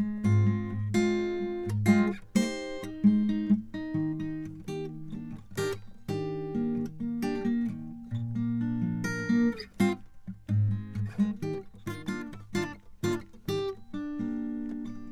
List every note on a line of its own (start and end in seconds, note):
0.00 0.49 G#3
0.26 0.72 G#2
0.26 0.85 C4
0.26 0.78 F4
0.49 0.92 G#3
0.72 1.65 G#2
0.96 1.42 G#3
0.96 1.78 C4
0.96 1.80 F4
1.45 1.78 G#3
1.67 1.86 G#2
1.88 2.16 G#3
1.88 2.13 C4
1.88 2.16 F4
2.37 2.49 A#3
2.37 2.81 D#4
2.37 2.96 G4
2.37 2.90 C5
2.49 2.63 A3
2.85 3.27 D#4
3.06 3.52 G#3
3.06 3.55 C5
3.31 3.58 D#4
3.52 3.64 A3
3.64 3.71 A3
3.76 4.16 D#4
3.96 4.65 D#3
3.96 4.11 G4
3.96 4.17 C5
4.22 4.52 D#4
4.70 5.49 D#3
4.70 5.04 A#3
4.70 4.80 D#4
4.70 4.93 G4
5.14 5.44 A#3
5.14 5.40 D4
5.59 5.76 D#3
5.59 5.79 D4
5.59 5.79 G4
5.59 5.79 A#4
6.10 6.77 D#3
6.10 6.90 D4
6.10 6.98 G4
6.57 6.90 A#3
6.77 7.42 D#3
7.02 7.42 A#3
7.24 7.47 D4
7.24 7.54 G4
7.47 7.73 A#3
7.63 8.12 A#2
7.72 7.96 D#3
8.13 9.55 A#2
8.37 8.74 A#3
8.63 9.59 D4
8.84 9.27 F3
9.06 9.67 A#4
9.31 9.56 A#3
9.81 9.94 G#2
9.81 9.98 G3
9.81 10.04 C4
9.81 9.99 F4
10.51 11.06 G#2
10.51 11.02 C4
10.56 10.71 G#3
10.73 11.09 G#3
11.09 11.36 D3
11.21 11.33 G#3
11.33 11.44 A3
11.44 11.63 D#3
11.44 11.63 D4
11.44 11.65 G4
11.88 12.29 D#3
11.88 12.06 D4
11.88 12.06 F4
12.09 12.32 A#3
12.09 12.38 D4
12.09 12.31 F4
12.55 12.76 D#3
12.55 12.76 A#3
12.55 12.77 D4
12.55 12.74 F4
13.06 13.25 D#3
13.06 13.24 A#3
13.06 13.25 D4
13.06 13.23 F4
13.50 13.69 D#3
13.50 13.72 D4
13.50 13.80 G4
13.96 14.87 D4
14.21 14.94 A#3
14.21 14.93 G4
14.21 14.93 A#4
14.88 15.12 D4